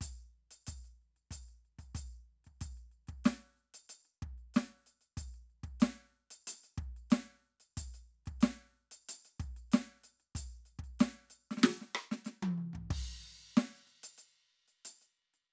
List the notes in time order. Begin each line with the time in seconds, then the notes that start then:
0.01 kick, percussion
0.19 percussion
0.51 percussion
0.67 kick, percussion
0.85 percussion
1.02 percussion
1.16 percussion
1.31 kick, percussion
1.49 percussion
1.65 percussion
1.79 kick, percussion
1.95 kick, percussion
2.13 percussion
2.44 kick, percussion
2.61 kick, percussion
2.77 percussion
2.92 percussion
3.08 kick, percussion
3.25 snare, percussion
3.57 percussion
3.74 percussion
3.89 percussion
4.05 percussion
4.22 kick, percussion
4.38 percussion
4.54 snare, percussion
4.86 percussion
5.01 percussion
5.17 kick, percussion
5.34 percussion
5.50 percussion
5.64 kick, percussion
5.80 snare, percussion
6.31 percussion
6.47 percussion
6.64 percussion
6.78 kick, percussion
6.97 percussion
7.10 snare, percussion
7.45 percussion
7.60 percussion
7.77 kick, percussion
7.94 percussion
8.26 kick, percussion
8.41 snare, percussion
8.76 percussion
8.91 percussion
9.09 percussion
9.25 percussion
9.40 kick, percussion
9.57 percussion
9.72 snare, percussion
10.04 percussion
10.20 percussion
10.35 kick, percussion
10.51 percussion
10.65 percussion
10.79 kick
10.84 percussion
11.00 snare, percussion
11.30 percussion
11.51 snare
11.57 snare
11.62 snare
11.63 snare
11.81 snare
11.95 high tom
12.12 snare
12.25 snare, percussion
12.43 high tom
12.58 mid tom
12.73 kick, floor tom
12.91 kick, crash
13.05 percussion
13.22 percussion
13.40 percussion
13.57 snare
13.75 percussion
13.87 percussion
14.03 percussion
14.18 percussion
14.35 percussion
14.68 percussion
14.85 percussion
15.01 percussion
15.17 percussion
15.34 percussion